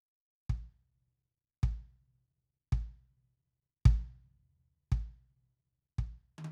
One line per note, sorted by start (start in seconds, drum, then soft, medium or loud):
0.50 kick medium
1.63 kick medium
2.72 kick medium
3.85 kick loud
4.92 kick medium
5.99 kick medium
6.38 high tom medium
6.44 high tom medium